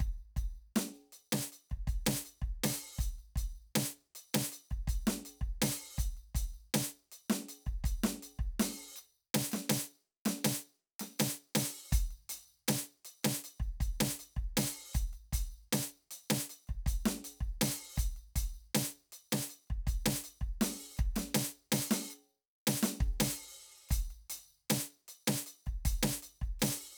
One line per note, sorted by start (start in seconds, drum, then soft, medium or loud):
0.00 kick medium
0.00 closed hi-hat medium
0.18 closed hi-hat soft
0.36 kick medium
0.36 closed hi-hat medium
0.54 closed hi-hat soft
0.76 closed hi-hat loud
0.76 snare loud
0.94 closed hi-hat soft
1.12 closed hi-hat medium
1.32 closed hi-hat soft
1.32 snare loud
1.52 closed hi-hat medium
1.70 kick soft
1.70 closed hi-hat soft
1.87 closed hi-hat soft
1.87 kick medium
2.06 closed hi-hat medium
2.06 snare loud
2.25 closed hi-hat medium
2.42 kick soft
2.42 closed hi-hat soft
2.63 snare loud
2.63 percussion loud
2.98 closed hi-hat medium
2.98 kick medium
2.98 hi-hat pedal medium
3.18 closed hi-hat soft
3.36 closed hi-hat medium
3.36 kick medium
3.55 closed hi-hat soft
3.75 closed hi-hat loud
3.75 snare loud
4.15 closed hi-hat medium
4.34 closed hi-hat medium
4.34 snare loud
4.40 snare soft
4.52 closed hi-hat medium
4.70 kick soft
4.70 closed hi-hat soft
4.87 closed hi-hat medium
4.87 kick medium
5.07 snare loud
5.07 closed hi-hat soft
5.25 closed hi-hat medium
5.41 kick soft
5.41 closed hi-hat soft
5.62 snare loud
5.62 percussion loud
5.97 closed hi-hat loud
5.97 kick medium
5.97 hi-hat pedal medium
6.17 closed hi-hat soft
6.35 closed hi-hat loud
6.35 kick medium
6.54 closed hi-hat soft
6.74 closed hi-hat loud
6.74 snare loud
7.12 closed hi-hat medium
7.30 snare loud
7.30 closed hi-hat soft
7.48 closed hi-hat medium
7.66 kick soft
7.66 closed hi-hat soft
7.84 closed hi-hat medium
7.84 kick medium
8.03 snare loud
8.22 closed hi-hat medium
8.39 kick soft
8.60 snare loud
8.60 percussion loud
8.96 hi-hat pedal medium
9.34 snare loud
9.34 closed hi-hat loud
9.52 snare loud
9.52 closed hi-hat loud
9.69 closed hi-hat loud
9.69 snare loud
10.25 snare loud
10.25 closed hi-hat loud
10.44 closed hi-hat loud
10.44 snare loud
10.99 snare medium
10.99 closed hi-hat loud
11.19 closed hi-hat loud
11.19 snare loud
11.55 snare loud
11.55 percussion loud
11.91 closed hi-hat loud
11.91 kick medium
11.91 hi-hat pedal medium
12.10 closed hi-hat soft
12.29 closed hi-hat loud
12.49 closed hi-hat soft
12.68 closed hi-hat loud
12.68 snare loud
12.86 closed hi-hat soft
13.05 closed hi-hat medium
13.23 snare loud
13.23 closed hi-hat soft
13.44 closed hi-hat medium
13.60 kick soft
13.60 closed hi-hat soft
13.80 closed hi-hat medium
13.80 kick medium
14.00 snare loud
14.00 closed hi-hat soft
14.18 closed hi-hat medium
14.18 snare soft
14.36 kick soft
14.36 closed hi-hat soft
14.57 snare loud
14.57 percussion loud
14.93 closed hi-hat loud
14.93 kick medium
14.93 hi-hat pedal medium
15.13 closed hi-hat soft
15.33 closed hi-hat loud
15.33 kick medium
15.52 closed hi-hat soft
15.73 closed hi-hat loud
15.73 snare loud
16.11 closed hi-hat loud
16.30 snare loud
16.49 closed hi-hat medium
16.67 kick soft
16.67 closed hi-hat soft
16.86 closed hi-hat loud
16.86 kick medium
17.05 snare loud
17.24 closed hi-hat medium
17.40 kick soft
17.40 closed hi-hat soft
17.61 snare loud
17.61 percussion loud
17.96 closed hi-hat loud
17.96 kick medium
17.96 hi-hat pedal medium
18.16 closed hi-hat soft
18.36 closed hi-hat loud
18.36 kick medium
18.54 closed hi-hat soft
18.75 closed hi-hat loud
18.75 snare loud
19.12 closed hi-hat medium
19.32 closed hi-hat soft
19.32 snare loud
19.49 closed hi-hat medium
19.67 kick soft
19.67 closed hi-hat soft
19.87 closed hi-hat medium
19.87 kick medium
20.06 snare loud
20.06 closed hi-hat soft
20.24 closed hi-hat medium
20.41 kick soft
20.41 closed hi-hat soft
20.61 snare loud
20.61 percussion loud
20.97 kick medium
20.97 hi-hat pedal medium
21.16 snare loud
21.16 closed hi-hat loud
21.34 snare loud
21.34 percussion loud
21.72 snare loud
21.72 percussion loud
21.91 snare loud
21.91 percussion loud
22.10 hi-hat pedal medium
22.67 closed hi-hat loud
22.67 snare loud
22.83 closed hi-hat loud
22.83 snare loud
23.00 kick medium
23.20 snare loud
23.20 percussion loud
23.89 closed hi-hat loud
23.89 kick medium
23.89 hi-hat pedal medium
24.10 closed hi-hat soft
24.30 closed hi-hat loud
24.48 closed hi-hat soft
24.70 closed hi-hat loud
24.70 snare loud
24.90 closed hi-hat soft
25.08 closed hi-hat medium
25.27 snare loud
25.27 closed hi-hat soft
25.46 closed hi-hat medium
25.66 kick soft
25.66 closed hi-hat soft
25.85 closed hi-hat loud
25.85 kick medium
26.03 snare loud
26.22 closed hi-hat medium
26.41 kick soft
26.41 closed hi-hat soft
26.59 snare loud
26.59 hi-hat pedal soft
26.59 percussion loud